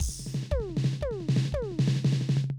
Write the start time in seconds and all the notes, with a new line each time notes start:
0.00 kick, crash
0.09 snare
0.19 snare
0.26 snare
0.34 snare
0.43 snare
0.51 kick, high tom
0.60 snare
0.70 snare
0.77 snare
0.84 snare
0.93 snare
1.01 kick, high tom
1.11 snare
1.20 snare
1.29 snare
1.36 snare
1.45 snare
1.52 kick, high tom
1.62 snare
1.72 snare
1.79 snare
1.88 snare
1.96 snare
2.05 snare
2.13 snare
2.21 snare
2.29 snare
2.37 floor tom
2.44 floor tom
2.49 floor tom
2.50 floor tom